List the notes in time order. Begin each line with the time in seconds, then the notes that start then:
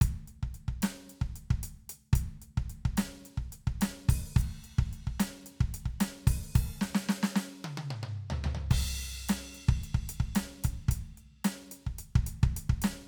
0.01 kick, closed hi-hat
0.27 closed hi-hat
0.43 kick
0.54 closed hi-hat
0.68 kick
0.82 snare, closed hi-hat
1.09 closed hi-hat
1.21 kick
1.36 closed hi-hat
1.50 kick
1.63 closed hi-hat
1.89 closed hi-hat
2.13 kick, closed hi-hat
2.42 closed hi-hat
2.57 kick
2.70 closed hi-hat
2.85 kick
2.97 snare, closed hi-hat
3.25 closed hi-hat
3.37 kick
3.52 closed hi-hat
3.67 kick
3.81 snare, closed hi-hat
4.09 kick, open hi-hat
4.36 kick, hi-hat pedal, crash
4.64 closed hi-hat
4.78 kick
4.93 closed hi-hat
5.07 kick
5.20 snare, closed hi-hat
5.46 closed hi-hat
5.60 kick
5.74 closed hi-hat
5.85 kick
6.00 snare, closed hi-hat
6.27 kick, open hi-hat
6.55 kick, hi-hat pedal, crash
6.81 snare
6.95 snare
7.09 snare
7.23 snare
7.36 snare
7.64 high tom
7.77 high tom
7.90 mid tom
8.03 mid tom
8.30 floor tom
8.44 floor tom
8.55 floor tom
8.71 kick, crash
9.29 snare, closed hi-hat
9.54 closed hi-hat
9.68 kick
9.83 closed hi-hat
9.94 kick
10.09 closed hi-hat
10.20 kick
10.35 snare, closed hi-hat
10.64 kick, closed hi-hat
10.88 kick, closed hi-hat
11.17 closed hi-hat
11.44 snare, closed hi-hat
11.71 closed hi-hat
11.86 kick
11.98 closed hi-hat
12.15 kick
12.26 closed hi-hat
12.43 kick
12.56 closed hi-hat
12.69 kick
12.82 snare, closed hi-hat